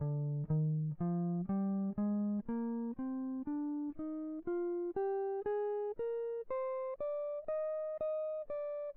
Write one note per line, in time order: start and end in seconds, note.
0.02 0.49 D3
0.52 0.96 D#3
1.01 1.48 F3
1.50 1.94 G3
1.98 2.44 G#3
2.49 2.96 A#3
2.99 3.46 C4
3.47 3.94 D4
3.99 4.44 D#4
4.47 4.94 F4
4.96 5.44 G4
5.46 5.95 G#4
5.99 6.44 A#4
6.50 6.96 C5
7.01 7.45 D5
7.48 7.99 D#5
8.01 8.46 D#5
8.50 8.93 D5